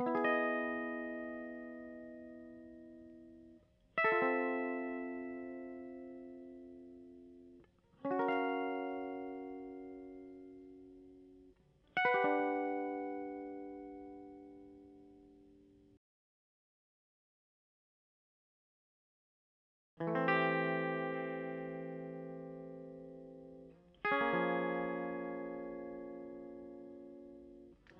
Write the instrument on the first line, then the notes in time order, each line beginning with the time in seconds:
electric guitar
0.00 B3
0.06 E4
0.15 G#4
0.24 D#5
3.98 E5
4.04 A4
4.12 F4
4.22 C4
8.05 C#4
8.11 F#4
8.19 A#4
8.29 F5
11.97 F#5
12.05 B4
12.14 G4
12.24 D4
19.95 D#3
20.01 E3
20.08 A3
20.15 C4
24.12 C#4
24.21 A#3
24.34 F3